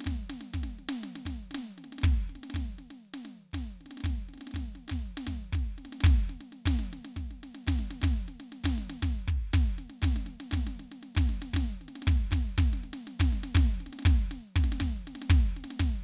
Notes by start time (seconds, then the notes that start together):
0.01 snare
0.04 kick, snare, hi-hat pedal
0.07 snare
0.30 snare
0.41 snare
0.54 kick, snare, hi-hat pedal
0.63 snare
0.79 snare
1.03 snare, hi-hat pedal
1.16 snare
1.25 kick, snare, hi-hat pedal
1.50 snare, hi-hat pedal, open hi-hat
1.55 snare
1.78 snare
1.84 snare
1.93 snare
1.98 snare
2.02 kick, snare, hi-hat pedal
2.04 snare
2.25 hi-hat pedal
2.29 snare
2.36 snare
2.43 snare
2.50 snare, hi-hat pedal
2.54 kick, snare
2.76 snare, hi-hat pedal
2.91 snare
3.05 hi-hat pedal
3.14 snare
3.25 snare
3.52 kick, snare, hi-hat pedal
3.81 snare
3.86 snare
3.97 snare
4.01 kick, snare, hi-hat pedal
4.06 snare
4.29 snare
4.34 snare
4.38 snare
4.41 snare
4.47 snare
4.51 kick, snare, hi-hat pedal
4.56 snare
4.75 snare
4.88 snare
4.90 kick, snare
5.02 hi-hat pedal
5.17 snare
5.27 kick, snare
5.52 kick, snare, hi-hat pedal
5.78 snare
5.85 snare
5.93 snare
6.01 kick, snare, hi-hat pedal
6.06 snare
6.29 snare
6.41 snare
6.52 snare, hi-hat pedal
6.66 kick, snare
6.67 snare
6.79 snare
6.93 snare
7.04 snare, hi-hat pedal
7.16 kick, snare
7.25 hi-hat pedal
7.31 snare
7.43 snare
7.52 snare, hi-hat pedal
7.67 kick, snare
7.75 hi-hat pedal
7.79 snare
7.91 snare
8.02 kick, snare, hi-hat pedal
8.04 snare
8.28 snare
8.40 snare
8.50 snare, hi-hat pedal
8.64 kick, snare
8.66 snare
8.72 hi-hat pedal
8.78 snare
8.90 snare
9.00 kick, snare, hi-hat pedal
9.28 kick, snare
9.51 kick, snare, hi-hat pedal
9.78 snare
9.90 snare
10.02 kick, snare, hi-hat pedal
10.04 snare
10.16 snare
10.26 snare
10.40 snare
10.51 kick, snare, hi-hat pedal
10.54 snare
10.67 snare
10.80 snare
10.92 snare
11.03 snare, hi-hat pedal
11.15 kick, snare
11.18 snare
11.29 snare
11.42 snare
11.54 kick, snare, hi-hat pedal
11.56 snare
11.81 snare
11.88 snare
11.96 snare
12.02 snare, hi-hat pedal
12.07 kick, snare
12.31 kick, snare
12.33 snare
12.57 kick, snare, hi-hat pedal
12.73 snare
12.84 snare
12.93 snare
13.06 snare, hi-hat pedal
13.20 kick, snare
13.33 snare
13.44 snare
13.55 kick, snare, hi-hat pedal
13.57 snare
13.80 snare
13.86 snare
13.93 snare
13.99 snare
14.03 kick, snare, hi-hat pedal
14.07 snare
14.31 snare
14.56 kick, snare, hi-hat pedal
14.64 snare
14.72 snare
14.80 kick, snare
15.06 snare, hi-hat pedal
15.15 snare
15.22 snare
15.30 kick, snare
15.56 snare, hi-hat pedal
15.64 snare
15.71 snare
15.80 kick, snare